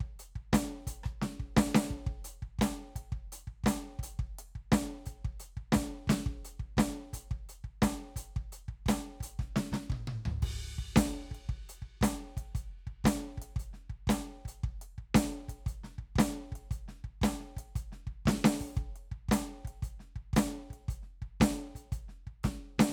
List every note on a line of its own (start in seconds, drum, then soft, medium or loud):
0.01 kick soft
0.20 closed hi-hat medium
0.36 kick soft
0.53 closed hi-hat loud
0.53 kick medium
0.53 snare loud
0.80 snare soft
0.87 closed hi-hat medium
0.87 kick soft
1.04 kick medium
1.04 cross-stick medium
1.22 snare medium
1.40 kick soft
1.57 kick medium
1.57 snare loud
1.75 snare loud
1.91 kick soft
2.07 kick medium
2.25 closed hi-hat medium
2.43 kick soft
2.59 closed hi-hat loud
2.59 kick medium
2.59 snare loud
2.96 kick soft
2.96 closed hi-hat medium
3.13 kick soft
3.33 closed hi-hat medium
3.48 kick soft
3.64 closed hi-hat loud
3.64 kick soft
3.64 snare loud
3.99 kick soft
4.04 closed hi-hat medium
4.20 kick medium
4.39 closed hi-hat medium
4.56 kick soft
4.72 closed hi-hat medium
4.72 kick medium
4.72 snare loud
5.06 closed hi-hat medium
5.06 kick soft
5.25 kick medium
5.40 closed hi-hat medium
5.57 kick soft
5.73 closed hi-hat medium
5.73 kick medium
5.73 snare loud
6.08 closed hi-hat medium
6.08 kick soft
6.08 snare loud
6.27 kick medium
6.45 closed hi-hat medium
6.60 kick soft
6.78 closed hi-hat medium
6.78 kick medium
6.78 snare loud
7.14 closed hi-hat medium
7.14 kick soft
7.32 kick medium
7.49 closed hi-hat medium
7.65 kick soft
7.82 kick medium
7.82 snare loud
7.82 closed hi-hat medium
8.17 closed hi-hat loud
8.17 kick soft
8.37 kick medium
8.53 closed hi-hat medium
8.69 kick soft
8.87 closed hi-hat loud
8.87 kick medium
8.87 snare loud
9.21 closed hi-hat medium
9.21 kick soft
9.40 kick medium
9.40 snare soft
9.56 snare loud
9.72 kick soft
9.72 snare medium
9.90 kick medium
9.90 high tom medium
10.08 high tom medium
10.26 kick soft
10.26 floor tom medium
10.43 kick medium
10.43 crash medium
10.79 kick soft
10.97 closed hi-hat loud
10.97 kick medium
10.97 snare loud
11.32 kick soft
11.32 closed hi-hat soft
11.47 kick medium
11.47 snare soft
11.70 closed hi-hat medium
11.82 kick soft
12.02 closed hi-hat loud
12.02 kick medium
12.02 snare loud
12.37 kick soft
12.37 closed hi-hat medium
12.55 closed hi-hat medium
12.55 kick medium
12.77 snare soft
12.87 kick soft
13.05 closed hi-hat loud
13.05 kick medium
13.05 snare loud
13.38 kick soft
13.42 closed hi-hat medium
13.57 closed hi-hat medium
13.57 kick medium
13.74 snare soft
13.90 kick soft
14.08 closed hi-hat loud
14.08 kick medium
14.08 snare loud
14.46 closed hi-hat medium
14.46 kick soft
14.64 kick medium
14.82 closed hi-hat medium
14.98 kick soft
15.15 closed hi-hat loud
15.15 kick medium
15.15 snare loud
15.49 kick soft
15.49 closed hi-hat medium
15.67 closed hi-hat medium
15.67 kick medium
15.84 snare soft
15.99 kick soft
16.16 closed hi-hat loud
16.16 kick medium
16.16 snare loud
16.52 kick soft
16.52 closed hi-hat soft
16.71 closed hi-hat medium
16.71 kick medium
16.88 snare soft
17.05 kick soft
17.22 closed hi-hat medium
17.22 kick medium
17.22 snare loud
17.40 snare soft
17.45 snare soft
17.57 kick soft
17.57 closed hi-hat medium
17.76 closed hi-hat medium
17.76 kick medium
17.92 snare soft
18.07 kick soft
18.26 kick medium
18.26 snare loud
18.45 snare loud
18.52 snare soft
18.58 open hi-hat medium
18.58 kick soft
18.58 snare soft
18.76 kick medium
18.76 hi-hat pedal soft
18.96 closed hi-hat soft
19.12 kick soft
19.29 closed hi-hat loud
19.29 kick medium
19.29 snare loud
19.65 kick soft
19.65 closed hi-hat soft
19.83 closed hi-hat medium
19.83 kick soft
20.00 snare soft
20.16 kick soft
20.34 closed hi-hat loud
20.34 kick medium
20.34 snare loud
20.71 kick soft
20.71 closed hi-hat soft
20.89 closed hi-hat medium
20.89 kick medium
21.03 snare soft
21.22 kick soft
21.41 closed hi-hat medium
21.41 kick medium
21.41 snare loud
21.76 closed hi-hat medium
21.76 kick soft
21.93 closed hi-hat medium
21.93 kick medium
22.09 snare soft
22.27 kick soft
22.44 closed hi-hat medium
22.44 kick medium
22.44 snare medium
22.79 closed hi-hat medium
22.79 kick soft
22.79 snare loud